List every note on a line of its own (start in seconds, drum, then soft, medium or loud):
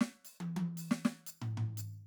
0.01 snare loud
0.25 percussion medium
0.41 high tom loud
0.41 percussion soft
0.57 high tom loud
0.78 percussion medium
0.91 snare medium
1.05 snare medium
1.27 percussion medium
1.42 floor tom medium
1.58 floor tom medium
1.78 percussion medium